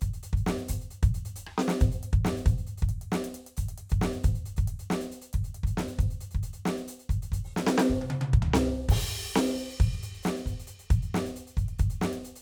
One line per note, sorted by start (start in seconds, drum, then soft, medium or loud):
0.01 closed hi-hat medium
0.01 kick medium
0.14 closed hi-hat medium
0.23 closed hi-hat medium
0.33 closed hi-hat soft
0.33 kick loud
0.46 snare loud
0.58 closed hi-hat soft
0.69 closed hi-hat loud
0.69 kick medium
0.81 closed hi-hat soft
0.91 closed hi-hat medium
1.03 closed hi-hat medium
1.03 kick loud
1.14 closed hi-hat medium
1.25 closed hi-hat medium
1.36 closed hi-hat loud
1.47 cross-stick medium
1.58 snare loud
1.68 snare loud
1.80 closed hi-hat medium
1.80 kick loud
1.92 closed hi-hat medium
2.03 closed hi-hat medium
2.13 kick loud
2.13 closed hi-hat soft
2.25 snare loud
2.37 closed hi-hat medium
2.46 closed hi-hat medium
2.46 kick loud
2.58 closed hi-hat soft
2.67 closed hi-hat medium
2.78 closed hi-hat medium
2.82 kick loud
2.89 closed hi-hat medium
3.01 closed hi-hat medium
3.12 snare loud
3.24 closed hi-hat medium
3.34 closed hi-hat medium
3.46 closed hi-hat medium
3.57 closed hi-hat loud
3.57 kick medium
3.69 closed hi-hat medium
3.78 closed hi-hat medium
3.90 closed hi-hat medium
3.90 kick loud
4.01 snare loud
4.13 closed hi-hat medium
4.24 closed hi-hat medium
4.24 kick loud
4.35 closed hi-hat soft
4.46 closed hi-hat medium
4.56 closed hi-hat medium
4.56 kick loud
4.67 closed hi-hat medium
4.79 closed hi-hat medium
4.90 snare loud
5.01 closed hi-hat medium
5.12 closed hi-hat medium
5.22 closed hi-hat medium
5.33 kick medium
5.33 closed hi-hat medium
5.44 closed hi-hat medium
5.55 closed hi-hat medium
5.63 closed hi-hat medium
5.63 kick loud
5.77 snare loud
5.88 closed hi-hat medium
5.99 kick loud
5.99 closed hi-hat medium
6.10 closed hi-hat medium
6.21 closed hi-hat medium
6.31 closed hi-hat soft
6.31 kick medium
6.43 closed hi-hat medium
6.53 closed hi-hat medium
6.65 snare loud
6.77 closed hi-hat soft
6.88 closed hi-hat loud
6.99 closed hi-hat medium
7.09 closed hi-hat medium
7.09 kick loud
7.22 closed hi-hat medium
7.32 open hi-hat medium
7.32 kick medium
7.44 open hi-hat medium
7.53 snare loud
7.53 hi-hat pedal soft
7.67 snare loud
7.78 snare loud
7.90 kick medium
7.90 hi-hat pedal soft
8.01 high tom medium
8.10 high tom loud
8.21 high tom loud
8.33 kick loud
8.42 floor tom loud
8.54 snare loud
8.89 kick loud
8.89 crash loud
9.36 snare loud
9.47 closed hi-hat medium
9.54 kick soft
9.58 closed hi-hat medium
9.70 closed hi-hat medium
9.80 closed hi-hat medium
9.80 kick loud
9.93 closed hi-hat soft
10.14 closed hi-hat soft
10.23 snare loud
10.23 hi-hat pedal medium
10.36 closed hi-hat medium
10.46 closed hi-hat medium
10.46 kick medium
10.60 closed hi-hat medium
10.67 closed hi-hat medium
10.79 closed hi-hat medium
10.90 closed hi-hat medium
10.90 kick loud
11.02 closed hi-hat medium
11.14 snare loud
11.26 closed hi-hat medium
11.36 closed hi-hat medium
11.47 closed hi-hat medium
11.57 closed hi-hat medium
11.57 kick loud
11.68 closed hi-hat soft
11.79 closed hi-hat medium
11.79 kick loud
11.90 closed hi-hat medium
12.01 snare loud
12.13 closed hi-hat medium
12.25 closed hi-hat medium
12.36 closed hi-hat medium